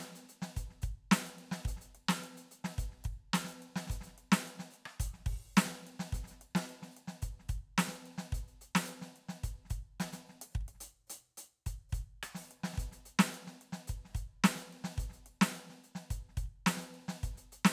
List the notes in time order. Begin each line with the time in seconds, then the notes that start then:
0.01 closed hi-hat
0.12 closed hi-hat, snare
0.29 closed hi-hat
0.42 snare
0.56 closed hi-hat, kick
0.70 snare
0.82 closed hi-hat, kick
0.91 kick
1.11 closed hi-hat, snare
1.21 snare
1.25 closed hi-hat
1.38 closed hi-hat
1.51 snare
1.62 kick, snare
1.68 closed hi-hat, kick
1.77 snare
1.81 closed hi-hat, snare
1.95 closed hi-hat
2.08 snare
2.19 snare
2.23 closed hi-hat
2.34 open hi-hat, snare
2.38 snare
2.42 snare
2.46 hi-hat pedal
2.51 closed hi-hat
2.64 snare
2.78 closed hi-hat, kick
2.84 kick
2.91 snare
2.96 snare
2.99 snare
3.04 kick, closed hi-hat
3.33 closed hi-hat, snare
3.44 closed hi-hat, snare
3.59 closed hi-hat, hi-hat pedal
3.76 snare
3.87 kick, snare
3.91 closed hi-hat
4.01 closed hi-hat, snare
4.07 snare
4.18 closed hi-hat
4.32 snare
4.47 closed hi-hat
4.59 snare
4.70 closed hi-hat, hi-hat pedal
4.85 cross-stick
5.00 closed hi-hat, kick
5.06 kick
5.13 snare
5.20 snare
5.24 open hi-hat, kick, snare
5.32 kick
5.36 kick
5.54 closed hi-hat, snare, hi-hat pedal
5.65 snare
5.87 closed hi-hat
5.99 snare
6.12 closed hi-hat, kick, snare
6.24 closed hi-hat, snare
6.31 snare
6.41 closed hi-hat
6.55 snare
6.69 closed hi-hat
6.82 snare
6.91 hi-hat pedal
6.97 closed hi-hat
7.07 snare
7.22 closed hi-hat, kick
7.39 snare
7.48 closed hi-hat, kick, snare
7.55 kick
7.58 kick
7.78 closed hi-hat, snare
7.88 snare
7.93 open hi-hat
8.06 closed hi-hat
8.18 snare
8.32 closed hi-hat, kick
8.38 kick
8.48 closed hi-hat
8.61 closed hi-hat
8.75 snare
8.84 hi-hat pedal
8.89 closed hi-hat
9.01 snare
9.16 closed hi-hat
9.28 snare
9.43 closed hi-hat, kick
9.65 snare
9.69 closed hi-hat, kick, snare
9.78 kick
10.00 closed hi-hat, snare
10.13 closed hi-hat, snare
10.26 snare, hi-hat pedal
10.41 closed hi-hat
10.52 kick, hi-hat pedal
10.61 kick
10.68 closed hi-hat
10.74 snare
10.80 closed hi-hat
11.07 closed hi-hat, hi-hat pedal
11.37 closed hi-hat
11.66 closed hi-hat, kick
11.89 kick, hi-hat pedal
11.94 closed hi-hat
11.99 kick
12.01 kick
12.23 closed hi-hat, cross-stick
12.34 open hi-hat, snare
12.47 closed hi-hat, hi-hat pedal
12.63 snare
12.73 snare
12.77 closed hi-hat, kick
12.92 closed hi-hat, snare
13.05 closed hi-hat
13.19 snare
13.27 snare
13.34 closed hi-hat
13.47 snare
13.61 closed hi-hat
13.72 snare
13.79 snare
13.87 closed hi-hat, kick
14.05 snare
14.09 snare
14.12 closed hi-hat, kick, snare
14.44 closed hi-hat, snare
14.55 closed hi-hat, snare
14.72 closed hi-hat
14.84 snare
14.96 closed hi-hat, kick, snare
15.03 kick
15.09 closed hi-hat, snare
15.15 snare
15.26 closed hi-hat
15.41 snare
15.47 snare, hi-hat pedal
15.55 closed hi-hat
15.69 snare
15.83 closed hi-hat
15.95 snare
16.10 closed hi-hat, kick
16.29 snare
16.35 closed hi-hat, kick, snare
16.43 kick
16.46 kick
16.66 closed hi-hat, snare
16.77 snare
16.81 closed hi-hat
16.94 closed hi-hat
17.08 snare
17.22 closed hi-hat, kick, snare
17.35 closed hi-hat, snare
17.40 snare
17.52 closed hi-hat
17.65 snare